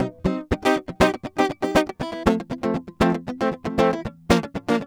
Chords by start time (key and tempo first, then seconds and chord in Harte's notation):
G minor, 119 BPM
0.00 C:min
2.02 F:maj7
4.03 A#:maj/5